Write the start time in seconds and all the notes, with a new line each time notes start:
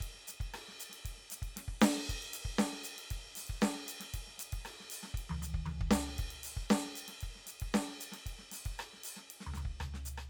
0.01 kick, ride
0.14 snare
0.28 snare, hi-hat pedal, ride
0.41 kick, ride
0.54 cross-stick, ride
0.69 snare
0.80 hi-hat pedal, ride
0.90 snare, ride
1.05 kick, ride
1.18 snare
1.31 snare, hi-hat pedal, ride
1.42 kick, ride
1.57 snare, ride
1.68 kick
1.81 snare, hi-hat pedal, ride
1.98 snare
2.10 kick, ride
2.23 snare, ride
2.34 hi-hat pedal, ride
2.45 kick
2.58 snare, hi-hat pedal, ride
2.73 snare
2.84 hi-hat pedal, ride
2.96 snare, ride
3.10 kick, hi-hat pedal, ride
3.23 snare
3.36 snare, hi-hat pedal, ride
3.47 kick, ride
3.61 snare, hi-hat pedal, ride
3.75 snare
3.88 hi-hat pedal, ride
4.01 snare, ride
4.14 kick, ride
4.28 snare
4.38 snare, hi-hat pedal, ride
4.53 kick, ride
4.64 cross-stick, hi-hat pedal, ride
4.81 snare
4.91 hi-hat pedal, ride
5.03 snare
5.15 kick, ride
5.30 floor tom, high tom
5.43 hi-hat pedal, high tom
5.55 kick
5.66 floor tom, hi-hat pedal, high tom
5.81 kick
5.91 snare, hi-hat pedal, ride
6.09 snare
6.17 kick, hi-hat pedal, ride
6.31 ride
6.36 snare
6.44 hi-hat pedal, ride
6.57 kick
6.69 snare, hi-hat pedal, ride
6.86 snare
6.96 hi-hat pedal, ride
7.09 snare, ride
7.21 kick, hi-hat pedal, ride
7.36 snare
7.47 snare, hi-hat pedal, ride
7.60 kick, ride
7.73 snare, hi-hat pedal, ride
7.89 snare
8.01 hi-hat pedal, ride
8.12 snare, ride
8.26 kick, hi-hat pedal, ride
8.39 snare
8.52 snare, hi-hat pedal, ride
8.66 kick, ride
8.79 cross-stick, ride
8.94 snare
9.04 hi-hat pedal, ride
9.17 snare
9.31 ride
9.41 snare
9.47 floor tom
9.54 snare, floor tom, hi-hat pedal
9.66 kick
9.81 cross-stick, floor tom
9.94 snare
10.06 hi-hat pedal
10.18 cross-stick